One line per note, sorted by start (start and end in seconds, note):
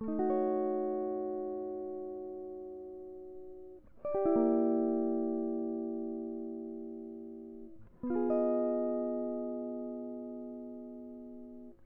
0.00 2.04 A3
0.08 2.65 D#4
0.22 3.85 F#4
0.32 2.28 C#5
4.05 6.64 D5
4.14 7.64 G4
4.26 7.80 E4
4.37 7.80 A#3
8.02 11.21 B3
8.11 9.58 F4
8.15 11.67 G#4
8.30 11.55 D#5